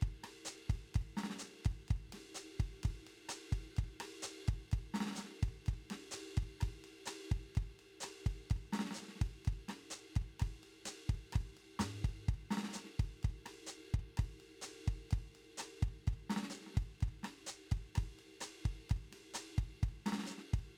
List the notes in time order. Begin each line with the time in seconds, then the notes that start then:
0.01 kick, ride
0.07 kick
0.23 cross-stick, snare, ride
0.45 hi-hat pedal, ride
0.70 kick, ride
0.75 kick
0.94 kick, ride
1.01 kick
1.17 snare, ride
1.24 snare
1.30 snare
1.36 snare, hi-hat pedal
1.42 snare, ride
1.47 snare
1.54 snare
1.59 snare
1.65 kick, ride
1.71 kick
1.88 kick, ride
1.96 kick
2.09 kick, ride
2.13 snare
2.35 hi-hat pedal, ride
2.60 kick, ride
2.72 snare
2.83 kick, snare, ride
2.90 kick
3.07 ride
3.29 cross-stick, hi-hat pedal, ride
3.52 kick, ride
3.77 kick, ride
3.83 kick
4.00 cross-stick, snare, ride
4.22 hi-hat pedal, ride
4.48 kick, ride
4.53 kick
4.72 kick, ride
4.78 kick
4.94 snare, ride
5.00 snare
5.06 snare
5.11 snare
5.15 snare, hi-hat pedal
5.20 ride
5.24 snare
5.31 snare
5.40 kick, snare, ride
5.48 kick
5.66 kick, ride
5.73 kick
5.90 snare, ride
6.11 hi-hat pedal, ride
6.37 kick, ride
6.42 kick
6.60 kick, cross-stick, snare, ride
6.68 kick
6.84 ride
7.06 cross-stick, snare, hi-hat pedal, ride
7.31 kick, ride
7.37 kick
7.55 kick, ride
7.62 kick
7.79 ride
8.00 cross-stick, snare, hi-hat pedal, ride
8.26 kick, ride
8.50 kick, ride
8.56 kick
8.73 snare, ride
8.79 snare
8.85 snare
8.91 snare, hi-hat pedal
8.96 snare, ride
9.02 snare
9.08 snare
9.16 snare
9.21 kick, snare, ride
9.26 kick, snare
9.30 snare
9.45 kick, ride
9.52 kick
9.68 cross-stick, snare, ride
9.90 hi-hat pedal, ride
10.16 kick, ride
10.21 kick
10.40 kick, cross-stick, ride
10.47 kick
10.63 ride
10.85 snare, hi-hat pedal, ride
11.09 kick, ride
11.14 kick
11.32 kick, cross-stick, snare, ride
11.41 kick
11.57 ride
11.79 snare, hi-hat pedal, mid tom, ride
12.04 kick, ride
12.09 kick
12.28 kick, ride
12.34 kick
12.51 snare, ride
12.57 snare
12.63 snare
12.69 snare
12.73 snare, hi-hat pedal, ride
12.84 snare
12.91 snare
12.99 kick, ride
13.04 kick
13.23 kick, ride
13.29 kick
13.46 cross-stick, ride
13.67 hi-hat pedal
13.93 kick, ride
13.99 kick
14.17 kick, cross-stick, ride
14.24 kick
14.40 ride
14.61 cross-stick, hi-hat pedal, ride
14.88 kick, ride
15.10 kick, snare, ride
15.18 kick
15.35 ride
15.57 cross-stick, hi-hat pedal, ride
15.82 kick, ride
15.88 kick
16.07 kick, ride
16.13 kick
16.30 snare, ride
16.36 snare
16.43 snare
16.50 snare, hi-hat pedal
16.55 snare, ride
16.60 snare
16.66 snare
16.74 kick, snare, ride
16.82 kick
17.01 kick, ride
17.08 kick
17.23 cross-stick, snare, ride
17.46 hi-hat pedal, ride
17.71 kick, ride
17.77 kick
17.95 kick, cross-stick, snare, hi-hat pedal, ride
18.03 kick
18.19 ride
18.28 snare
18.41 cross-stick, snare, hi-hat pedal, ride
18.65 kick, ride
18.89 kick, cross-stick, ride
18.96 kick
19.02 snare
19.11 snare, ride
19.34 cross-stick, hi-hat pedal, ride
19.58 kick, ride
19.63 kick
19.83 kick, ride
19.88 kick
20.06 snare, ride
20.12 snare
20.18 snare
20.24 snare, hi-hat pedal
20.30 snare, ride
20.38 snare
20.53 kick, ride
20.59 kick